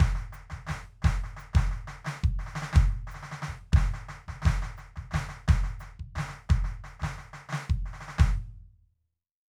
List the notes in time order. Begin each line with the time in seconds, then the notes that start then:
0.01 kick, snare
0.16 snare
0.34 snare, hi-hat pedal
0.51 kick, snare
0.68 snare
0.70 kick, snare
1.03 kick, snare
1.06 snare
1.25 snare
1.38 snare, hi-hat pedal
1.55 kick, snare
1.58 snare
1.73 snare
1.89 snare
2.06 snare
2.08 snare
2.25 kick
2.40 snare
2.48 snare
2.57 snare
2.64 snare
2.74 kick, snare
2.91 snare
3.08 snare, hi-hat pedal
3.16 snare
3.24 snare
3.33 snare
3.44 snare
3.50 kick
3.74 kick, snare
3.78 snare
3.95 snare
4.10 snare
4.29 kick, snare
4.43 kick, snare
4.48 snare
4.64 snare
4.79 snare, hi-hat pedal
4.97 kick, snare
5.12 kick, snare
5.16 snare
5.30 snare
5.49 kick, snare
5.65 snare
5.81 snare, hi-hat pedal
6.01 kick
6.17 kick, snare
6.20 snare
6.30 snare
6.51 kick, snare
6.66 snare
6.85 snare
7.01 kick, snare
7.05 snare
7.19 snare
7.35 snare
7.50 snare
7.54 snare
7.71 kick
7.87 snare
7.95 snare
8.02 snare
8.10 snare
8.20 kick, snare